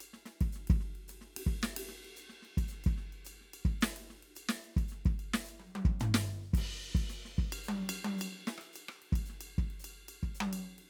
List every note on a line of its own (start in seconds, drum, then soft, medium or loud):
0.01 hi-hat pedal medium
0.01 ride bell medium
0.14 snare soft
0.26 snare soft
0.26 ride soft
0.41 kick medium
0.41 ride medium
0.53 snare soft
0.53 hi-hat pedal medium
0.68 kick medium
0.68 ride medium
0.81 snare soft
0.96 ride soft
1.08 snare soft
1.08 hi-hat pedal medium
1.08 ride medium
1.08 floor tom soft
1.22 snare soft
1.33 hi-hat pedal soft
1.33 ride loud
1.47 kick medium
1.62 snare medium
1.62 hi-hat pedal medium
1.77 ride loud
1.89 snare soft
2.04 snare soft
2.04 ride soft
2.17 hi-hat pedal medium
2.17 ride bell soft
2.30 snare soft
2.43 snare soft
2.43 ride soft
2.58 kick medium
2.58 ride bell medium
2.69 hi-hat pedal medium
2.73 snare soft
2.84 kick medium
2.84 ride bell soft
2.98 snare soft
3.13 ride bell soft
3.25 hi-hat pedal medium
3.25 ride bell medium
3.41 snare soft
3.54 ride bell medium
3.65 kick medium
3.81 snare loud
3.81 hi-hat pedal medium
3.97 ride medium
4.10 snare soft
4.23 ride soft
4.36 hi-hat pedal medium
4.36 ride bell medium
4.49 snare loud
4.65 ride bell soft
4.77 kick medium
4.77 ride bell soft
4.89 snare soft
4.89 hi-hat pedal medium
5.05 kick medium
5.05 ride soft
5.20 ride bell soft
5.34 snare loud
5.45 hi-hat pedal medium
5.49 ride bell soft
5.60 high tom soft
5.68 hi-hat pedal soft
5.76 high tom loud
5.85 kick medium
6.00 floor tom loud
6.00 hi-hat pedal medium
6.15 snare loud
6.54 kick medium
6.54 hi-hat pedal medium
6.54 ride medium
6.54 crash medium
6.84 ride soft
6.95 kick medium
6.95 ride bell soft
7.10 snare soft
7.10 hi-hat pedal medium
7.25 snare soft
7.35 kick medium
7.35 hi-hat pedal soft
7.53 ride bell loud
7.64 hi-hat pedal medium
7.69 high tom loud
7.90 ride bell loud
8.05 high tom loud
8.19 hi-hat pedal medium
8.19 ride bell loud
8.48 snare medium
8.48 ride bell soft
8.58 cross-stick medium
8.58 ride soft
8.74 hi-hat pedal medium
8.74 ride bell medium
8.89 cross-stick medium
9.02 ride soft
9.13 kick medium
9.13 ride bell medium
9.26 snare soft
9.26 hi-hat pedal medium
9.41 ride bell medium
9.59 kick medium
9.71 ride soft
9.80 hi-hat pedal medium
9.85 ride bell medium
10.09 ride bell medium
10.23 kick medium
10.35 hi-hat pedal medium
10.41 high tom loud
10.53 ride bell medium
10.79 ride soft